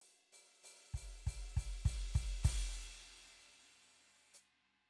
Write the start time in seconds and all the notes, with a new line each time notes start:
0.02 open hi-hat, ride
0.33 open hi-hat, ride
0.64 open hi-hat, ride
0.94 open hi-hat, kick, ride
1.27 open hi-hat, kick, ride
1.57 open hi-hat, kick, ride
1.85 open hi-hat, kick, ride
2.14 open hi-hat, kick, ride
2.44 open hi-hat, kick, ride
4.34 hi-hat pedal